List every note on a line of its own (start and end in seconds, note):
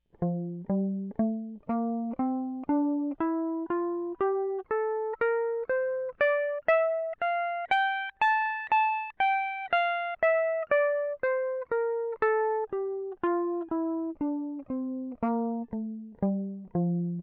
0.23 0.67 F3
0.70 1.15 G3
1.20 1.48 A3
1.70 2.16 A#3
2.20 2.67 C4
2.69 3.16 D4
3.21 3.69 E4
3.70 4.16 F4
4.21 4.63 G4
4.71 5.17 A4
5.22 5.66 A#4
5.70 6.12 C5
6.21 6.62 D5
6.69 7.16 E5
7.22 7.68 F5
7.71 8.11 G5
8.22 8.69 A5
8.72 9.13 A5
9.20 9.69 G5
9.73 10.17 F5
10.23 10.65 E5
10.72 11.17 D5
11.24 11.65 C5
11.72 12.18 A#4
12.22 12.67 A4
12.73 13.16 G4
13.24 13.66 F4
13.72 14.15 E4
14.21 14.64 D4
14.71 15.17 C4
15.23 15.66 A#3
15.74 16.17 A3
16.23 16.69 G3
16.76 17.23 F3